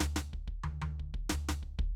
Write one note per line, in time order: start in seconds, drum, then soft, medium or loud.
0.00 snare medium
0.00 floor tom medium
0.16 snare medium
0.16 floor tom medium
0.33 kick soft
0.48 kick soft
0.64 floor tom medium
0.64 high tom medium
0.82 floor tom medium
0.82 high tom medium
1.00 kick soft
1.14 kick soft
1.30 snare medium
1.30 floor tom medium
1.49 snare medium
1.49 floor tom medium
1.63 kick soft
1.79 kick medium